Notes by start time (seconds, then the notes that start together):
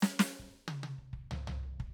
0.00 snare, hi-hat pedal
0.19 snare
0.39 kick
0.51 kick
0.68 high tom
0.83 high tom
0.98 kick
1.13 kick
1.31 floor tom
1.47 floor tom
1.63 kick
1.80 kick